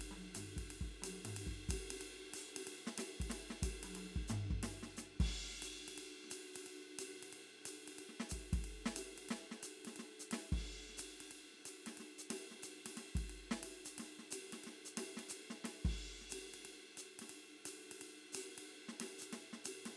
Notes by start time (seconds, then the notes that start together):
0.01 ride
0.11 high tom
0.35 floor tom, hi-hat pedal, ride
0.57 kick, ride
0.70 ride
0.81 kick
1.02 hi-hat pedal, high tom, ride
1.25 floor tom, ride
1.37 ride
1.47 kick
1.69 kick, hi-hat pedal, ride
1.91 ride
2.01 ride
2.34 hi-hat pedal, ride
2.56 ride
2.67 ride
2.87 snare
2.98 snare, hi-hat pedal, ride
3.20 kick, ride
3.30 snare, ride
3.50 snare
3.63 kick, hi-hat pedal, ride
3.83 high tom, ride
3.95 high tom, ride
4.16 kick
4.28 snare, floor tom, hi-hat pedal
4.51 kick
4.63 snare, ride
4.83 snare
4.97 snare, hi-hat pedal
5.20 kick, ride
5.52 snare
5.62 hi-hat pedal, ride
5.88 ride
5.98 ride
6.24 snare
6.27 snare
6.29 snare, hi-hat pedal, ride
6.54 hi-hat pedal, ride
6.66 ride
6.99 hi-hat pedal, ride
7.23 ride
7.33 ride
7.56 snare
7.65 hi-hat pedal, ride
7.86 hi-hat pedal, ride
7.99 ride
8.09 snare
8.20 snare
8.29 kick, hi-hat pedal, ride
8.53 kick, ride
8.64 ride
8.86 snare
8.96 hi-hat pedal, ride
9.18 ride
9.29 snare, ride
9.51 snare
9.63 hi-hat pedal, ride
9.85 snare, ride
9.96 snare, ride
10.20 hi-hat pedal
10.31 snare, ride
10.52 kick, ride
10.64 ride
10.89 snare
10.97 hi-hat pedal, ride
11.20 ride
11.31 ride
11.54 snare
11.57 snare
11.62 snare, hi-hat pedal, ride
11.86 snare, ride
11.97 snare, ride
12.18 hi-hat pedal
12.30 snare, ride
12.51 snare
12.63 hi-hat pedal, ride
12.86 snare, ride
12.97 snare, ride
13.15 kick, ride
13.30 ride
13.51 snare
13.63 ride
13.85 hi-hat pedal, ride
13.98 snare, ride
14.19 snare
14.31 hi-hat pedal, ride
14.53 snare, ride
14.64 snare, ride
14.85 hi-hat pedal
14.97 snare, ride
15.17 snare, ride
15.29 hi-hat pedal, ride
15.50 snare
15.64 snare, ride
15.85 kick, ride
15.98 ride
16.21 snare
16.30 hi-hat pedal, ride
16.51 hi-hat pedal, ride
16.65 ride
16.85 snare
16.94 snare, ride
16.98 hi-hat pedal
17.19 snare, ride
17.30 ride
17.65 hi-hat pedal, ride
17.91 ride
18.01 ride
18.32 hi-hat pedal, ride
18.58 ride
18.89 snare
19.00 snare, ride
19.18 hi-hat pedal, ride
19.33 snare, ride
19.53 snare
19.64 hi-hat pedal, ride
19.86 snare, ride